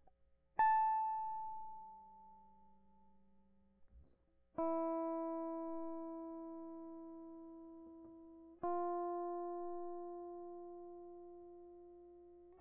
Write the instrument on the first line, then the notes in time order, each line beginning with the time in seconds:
electric guitar
0.60 A5
4.59 E4
8.64 F4